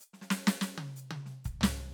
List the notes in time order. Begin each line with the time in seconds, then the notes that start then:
0.00 hi-hat pedal
0.13 snare
0.21 snare
0.30 snare
0.47 snare, hi-hat pedal
0.61 snare
0.78 high tom
0.96 hi-hat pedal
1.11 high tom
1.26 snare
1.44 kick, hi-hat pedal
1.61 snare, floor tom